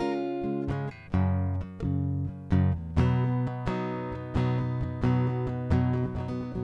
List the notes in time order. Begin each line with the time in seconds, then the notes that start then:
0.00 C#4 F4 A#4
0.05 G#3
0.46 C#3 G#3
0.70 C#3 G#3 C#4
0.93 A2
1.14 F#2 C#3
1.63 F#2
1.86 F#2 C#3
2.28 F#2 C#3
2.52 F#2 C#3
2.74 E2 A2
2.99 B2 F#3 B3
3.16 F#3
3.30 B2
3.40 F#3
3.49 B2
3.68 B2 F#3 B3
3.72 D#4
4.14 B2 F#3
4.37 B2 F#3 B3
4.42 D#4
4.56 F#3 B3
4.63 B2
4.77 F#3
4.83 B2
5.05 B2 F#3 B3
5.29 B2 F#3
5.49 B2 F#3
5.73 B2 F#3
5.95 B2 F#3
6.00 B3
6.05 B2 F#3
6.18 B2 F#3 B3
6.30 F#3 B3
6.43 B2 F#3
6.53 F#3 B3